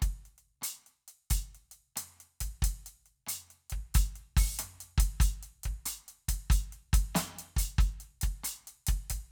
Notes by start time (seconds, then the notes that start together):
0.00 kick, cross-stick, closed hi-hat
0.25 closed hi-hat
0.38 closed hi-hat
0.61 closed hi-hat, cross-stick
0.86 closed hi-hat
1.08 closed hi-hat
1.30 closed hi-hat, kick
1.55 closed hi-hat
1.71 closed hi-hat
1.96 cross-stick, closed hi-hat, high tom
2.20 closed hi-hat
2.40 kick, closed hi-hat
2.62 kick, closed hi-hat
2.86 closed hi-hat
3.06 closed hi-hat
3.27 closed hi-hat, cross-stick, high tom
3.50 closed hi-hat
3.70 kick, closed hi-hat
3.94 closed hi-hat, kick
4.16 closed hi-hat
4.37 open hi-hat, kick
4.56 cross-stick, closed hi-hat, hi-hat pedal, high tom
4.80 closed hi-hat
4.98 kick, closed hi-hat
5.20 closed hi-hat, kick
5.43 closed hi-hat
5.63 kick, closed hi-hat
5.86 closed hi-hat, cross-stick
6.08 closed hi-hat
6.28 kick, closed hi-hat
6.50 closed hi-hat, kick
6.72 closed hi-hat
6.93 kick, closed hi-hat
7.15 closed hi-hat, snare, high tom
7.20 cross-stick
7.39 closed hi-hat
7.57 closed hi-hat, kick
7.78 closed hi-hat, kick
8.00 closed hi-hat
8.21 kick, closed hi-hat
8.44 closed hi-hat, cross-stick
8.67 closed hi-hat
8.87 kick, closed hi-hat
9.10 kick, closed hi-hat